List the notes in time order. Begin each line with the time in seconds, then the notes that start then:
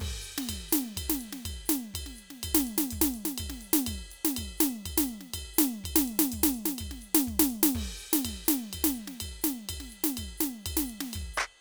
0.01 kick, crash
0.09 kick
0.22 hi-hat pedal
0.38 snare
0.49 kick, ride bell
0.69 snare, hi-hat pedal
0.81 snare
0.97 kick, ride bell
1.03 kick
1.10 snare
1.19 hi-hat pedal, ride
1.33 snare
1.46 kick, ride bell
1.52 kick
1.66 snare, hi-hat pedal
1.95 kick, ride bell
2.00 kick
2.07 snare
2.16 hi-hat pedal, ride
2.31 snare
2.44 kick, ride bell
2.50 kick
2.55 snare
2.65 hi-hat pedal, ride
2.78 snare
2.91 kick, ride bell
2.99 kick, snare
3.14 hi-hat pedal, ride
3.26 snare
3.38 kick, ride bell
3.46 kick
3.50 snare
3.61 hi-hat pedal, ride
3.74 snare
3.87 kick, ride bell
3.94 kick
4.11 hi-hat pedal, ride
4.25 snare
4.37 kick, ride bell
4.44 kick
4.58 snare, hi-hat pedal
4.86 kick, ride bell
4.98 snare
5.06 hi-hat pedal, ride
5.21 snare
5.34 kick, ride bell
5.40 kick
5.54 hi-hat pedal
5.59 snare
5.84 kick, ride bell
5.96 snare
6.05 hi-hat pedal, ride
6.20 snare
6.32 kick, ride bell
6.39 kick
6.44 snare
6.54 hi-hat pedal, ride
6.66 snare
6.79 kick, ride bell
6.87 kick
6.92 snare
7.02 hi-hat pedal, ride
7.15 snare
7.28 kick, ride
7.40 snare
7.49 hi-hat pedal, ride
7.64 snare
7.75 kick, crash
7.81 kick
7.97 hi-hat pedal
8.14 snare
8.25 kick, ride bell
8.31 kick
8.46 snare, hi-hat pedal
8.73 kick, ride bell
8.80 kick
8.85 snare
8.94 hi-hat pedal, ride
9.08 snare
9.21 kick, ride bell
9.42 snare, hi-hat pedal
9.52 snare
9.69 kick, ride bell
9.76 kick
9.81 snare
9.90 hi-hat pedal, ride
10.04 snare
10.18 kick, ride bell
10.38 snare, hi-hat pedal
10.60 hi-hat pedal
10.66 kick, ride bell
10.72 kick
10.77 snare
10.86 hi-hat pedal
10.90 ride
11.01 snare
11.09 hi-hat pedal
11.14 kick, ride bell
11.22 kick
11.34 percussion, hi-hat pedal